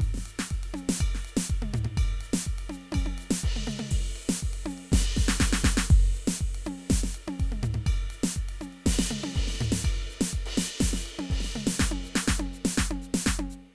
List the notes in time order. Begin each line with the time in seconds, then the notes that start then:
0.01 kick, hi-hat pedal, ride
0.15 snare
0.18 snare
0.26 hi-hat pedal, ride
0.40 snare
0.51 kick, hi-hat pedal, ride
0.64 ride
0.74 hi-hat pedal, high tom
0.90 snare
1.01 kick, hi-hat pedal, ride bell
1.15 snare
1.25 hi-hat pedal, ride
1.37 snare
1.50 kick, hi-hat pedal, ride
1.63 mid tom
1.74 floor tom, hi-hat pedal
1.85 floor tom
1.98 kick, hi-hat pedal, ride bell
2.21 hi-hat pedal, ride
2.34 snare
2.46 kick, hi-hat pedal, ride
2.59 ride
2.70 hi-hat pedal, high tom
2.82 ride
2.93 kick, high tom, ride bell
2.97 hi-hat pedal
3.07 high tom
3.19 hi-hat pedal, ride
3.31 snare
3.44 kick, hi-hat pedal, ride
3.57 mid tom
3.68 hi-hat pedal, mid tom
3.80 mid tom
3.92 kick, hi-hat pedal, crash
4.16 hi-hat pedal, ride bell
4.30 snare
4.41 kick, hi-hat pedal, ride
4.54 ride
4.66 hi-hat pedal, high tom
4.78 ride
4.93 kick, snare, hi-hat pedal, ride
5.02 snare
5.17 kick, snare, hi-hat pedal
5.29 snare
5.41 kick, snare, hi-hat pedal
5.53 snare
5.64 kick, snare, hi-hat pedal
5.78 snare
5.91 kick, crash
6.14 hi-hat pedal, ride
6.28 snare
6.38 kick, hi-hat pedal, ride
6.55 ride
6.65 hi-hat pedal, high tom
6.79 ride
6.90 kick, snare, hi-hat pedal, ride
7.04 snare
7.14 hi-hat pedal, ride
7.28 high tom
7.38 kick, hi-hat pedal, ride
7.52 mid tom
7.64 floor tom, hi-hat pedal
7.75 floor tom
7.87 kick, hi-hat pedal, ride bell
8.11 hi-hat pedal, ride
8.24 snare
8.36 kick, hi-hat pedal, ride
8.49 ride
8.61 hi-hat pedal, high tom
8.73 ride
8.87 kick, snare, hi-hat pedal, ride
8.99 snare
9.10 hi-hat pedal, mid tom
9.24 high tom
9.35 kick, hi-hat pedal, ride
9.48 snare
9.55 snare
9.61 floor tom, hi-hat pedal
9.73 snare
9.85 kick, hi-hat pedal, ride bell
10.08 hi-hat pedal, ride
10.22 snare
10.34 kick, hi-hat pedal, ride
10.47 ride
10.58 snare, hi-hat pedal
10.70 ride
10.81 kick, snare, hi-hat pedal, ride
10.94 snare
11.06 hi-hat pedal, ride
11.19 high tom
11.31 kick, hi-hat pedal, ride
11.41 snare
11.45 snare
11.56 hi-hat pedal, mid tom
11.68 snare
11.80 kick, snare, hi-hat pedal
11.92 high tom
12.05 kick, hi-hat pedal
12.16 snare
12.28 kick, snare, hi-hat pedal
12.40 high tom
12.54 hi-hat pedal
12.66 snare
12.77 kick, snare, hi-hat pedal
12.91 high tom
13.02 hi-hat pedal
13.15 snare
13.26 kick, snare, hi-hat pedal
13.40 high tom
13.51 hi-hat pedal